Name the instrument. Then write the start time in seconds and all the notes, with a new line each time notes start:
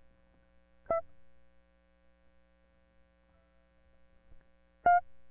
electric guitar
0.91 E5
4.86 F5